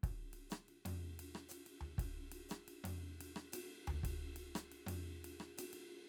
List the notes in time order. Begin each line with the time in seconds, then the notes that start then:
0.03 kick, ride
0.33 ride
0.50 cross-stick, hi-hat pedal
0.68 ride
0.85 mid tom, ride
1.19 ride
1.35 cross-stick
1.49 hi-hat pedal, ride
1.66 ride
1.81 floor tom
1.98 kick, ride
2.32 ride
2.49 cross-stick, hi-hat pedal
2.68 ride
2.84 mid tom, ride
3.21 ride
3.36 cross-stick
3.52 hi-hat pedal, ride
3.87 floor tom, ride
4.03 kick, ride
4.36 ride
4.55 cross-stick, hi-hat pedal
4.72 ride
4.86 mid tom, ride
5.24 ride
5.40 cross-stick
5.57 hi-hat pedal, ride
5.73 ride